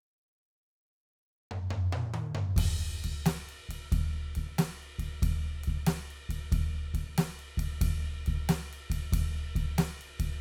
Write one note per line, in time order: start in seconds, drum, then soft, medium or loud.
1.51 floor tom loud
1.71 floor tom loud
1.93 mid tom loud
2.14 high tom loud
2.35 floor tom loud
2.56 kick loud
2.56 ride loud
2.56 crash loud
2.80 ride soft
3.04 kick medium
3.04 ride medium
3.26 snare loud
3.26 ride loud
3.49 ride medium
3.69 kick medium
3.69 ride medium
3.92 kick loud
3.92 ride medium
4.35 kick medium
4.35 ride medium
4.58 snare loud
4.58 ride loud
4.82 ride soft
4.99 kick medium
4.99 ride medium
5.22 kick loud
5.22 ride loud
5.64 kick medium
5.64 ride medium
5.87 snare loud
5.87 ride loud
6.10 ride soft
6.29 kick medium
6.29 ride medium
6.52 kick loud
6.52 ride medium
6.94 kick medium
6.94 ride medium
7.18 snare loud
7.18 ride loud
7.39 ride soft
7.57 kick loud
7.57 ride loud
7.81 kick loud
7.81 ride loud
8.26 kick loud
8.26 ride medium
8.49 snare loud
8.49 ride loud
8.73 ride medium
8.90 kick medium
8.90 ride loud
9.13 kick loud
9.13 ride loud
9.37 ride soft
9.55 kick loud
9.55 ride medium
9.78 snare loud
9.78 ride loud
10.01 ride medium
10.20 kick medium
10.20 ride loud